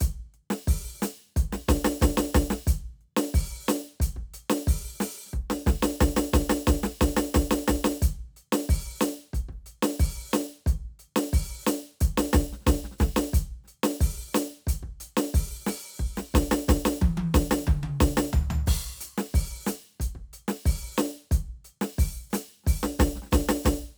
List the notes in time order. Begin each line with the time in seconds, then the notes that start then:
0.01 closed hi-hat, kick
0.34 closed hi-hat
0.51 snare
0.68 open hi-hat, kick
1.00 closed hi-hat, snare, hi-hat pedal
1.37 closed hi-hat, kick
1.53 snare
1.69 kick, snare
1.85 snare
2.00 kick, snare, hi-hat pedal
2.18 snare
2.33 kick, snare, hi-hat pedal
2.51 snare
2.67 closed hi-hat, kick
3.01 closed hi-hat
3.17 snare
3.24 cross-stick
3.35 open hi-hat, kick
3.67 closed hi-hat, snare, hi-hat pedal
4.01 closed hi-hat, kick
4.17 kick
4.34 closed hi-hat
4.50 snare
4.68 open hi-hat, kick
5.01 open hi-hat, snare
5.26 snare
5.31 kick, hi-hat pedal
5.51 snare
5.67 kick, snare
5.83 snare
6.01 kick, snare
6.17 snare
6.34 kick, snare
6.50 snare
6.68 kick, snare
6.84 snare
7.01 kick, snare
7.17 snare
7.35 kick, snare
7.51 snare
7.68 kick, snare
7.85 snare
8.02 closed hi-hat, kick
8.37 closed hi-hat
8.53 snare
8.70 open hi-hat, kick
9.01 closed hi-hat, snare, hi-hat pedal
9.34 closed hi-hat, kick
9.49 kick
9.53 crash
9.67 closed hi-hat
9.83 snare
10.00 open hi-hat, kick
10.32 closed hi-hat, snare, hi-hat pedal
10.67 closed hi-hat, kick
11.00 closed hi-hat
11.17 snare
11.33 open hi-hat, kick
11.64 snare, hi-hat pedal
11.68 closed hi-hat
12.01 closed hi-hat, kick
12.18 snare
12.34 kick, snare
12.53 snare
12.61 snare
12.63 kick, snare, hi-hat pedal
12.67 snare
12.85 snare
12.92 snare
12.99 kick, snare, hi-hat pedal
13.17 snare
13.34 closed hi-hat, kick
13.65 closed hi-hat, snare
13.84 snare
14.01 open hi-hat, kick
14.33 closed hi-hat, snare, hi-hat pedal
14.67 closed hi-hat, kick
14.83 kick
15.01 closed hi-hat
15.17 snare
15.35 open hi-hat, kick
15.67 open hi-hat, snare
16.00 kick
16.18 snare
16.35 kick, snare
16.52 snare
16.69 kick, snare
16.86 snare
17.02 kick, high tom
17.18 high tom
17.35 kick, snare
17.52 snare
17.67 kick, mid tom
17.84 mid tom
18.01 kick, snare
18.18 snare
18.34 kick, floor tom
18.51 floor tom
18.66 kick, hi-hat pedal, crash
18.68 kick
18.98 closed hi-hat, hi-hat pedal
19.18 snare
19.35 open hi-hat, kick
19.67 closed hi-hat, snare, hi-hat pedal
20.00 closed hi-hat, kick
20.16 kick
20.34 closed hi-hat
20.49 snare
20.66 open hi-hat, kick
20.98 snare, hi-hat pedal
21.32 closed hi-hat, kick
21.65 closed hi-hat
21.82 snare
21.99 open hi-hat, kick
22.31 closed hi-hat, snare, hi-hat pedal
22.64 open hi-hat, kick, snare
22.84 snare
22.99 kick, snare, hi-hat pedal
23.16 snare
23.23 snare
23.26 snare
23.32 kick, snare, hi-hat pedal
23.49 snare
23.64 kick, snare, hi-hat pedal